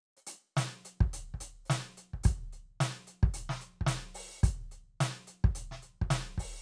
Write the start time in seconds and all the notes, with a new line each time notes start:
0.17 hi-hat pedal
0.27 closed hi-hat
0.56 closed hi-hat, snare, hi-hat pedal
0.85 closed hi-hat
1.01 kick
1.13 closed hi-hat
1.34 kick
1.40 closed hi-hat
1.65 hi-hat pedal
1.70 closed hi-hat, snare
1.97 closed hi-hat
2.13 kick
2.24 closed hi-hat, kick
2.53 closed hi-hat
2.80 closed hi-hat, snare
3.07 closed hi-hat
3.23 kick
3.34 closed hi-hat
3.49 snare
3.61 closed hi-hat
3.81 kick
3.87 closed hi-hat, snare
4.14 open hi-hat
4.39 kick, hi-hat pedal
4.43 closed hi-hat
4.71 closed hi-hat
5.00 closed hi-hat, snare
5.27 closed hi-hat
5.44 kick
5.55 closed hi-hat
5.71 snare
5.82 closed hi-hat
6.02 kick
6.10 closed hi-hat, snare
6.38 open hi-hat, kick